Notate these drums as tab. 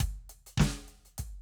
HH |x-xx--xxx-------|
SD |----o-----------|
BD |o---o---o-------|